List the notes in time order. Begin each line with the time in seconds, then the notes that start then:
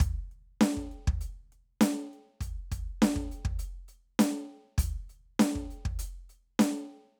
0.00 kick, closed hi-hat
0.31 closed hi-hat
0.61 closed hi-hat, snare
0.77 kick
0.91 closed hi-hat
1.07 kick
1.21 closed hi-hat
1.52 closed hi-hat
1.81 closed hi-hat, snare
2.13 closed hi-hat
2.41 closed hi-hat, kick
2.71 closed hi-hat, kick
3.02 closed hi-hat, snare
3.16 kick
3.31 closed hi-hat
3.45 kick
3.59 closed hi-hat
3.88 closed hi-hat
4.19 closed hi-hat, snare
4.78 closed hi-hat, kick
5.09 closed hi-hat
5.39 closed hi-hat, snare
5.55 kick
5.70 closed hi-hat
5.85 kick, crash
5.99 closed hi-hat
6.29 closed hi-hat
6.59 closed hi-hat, snare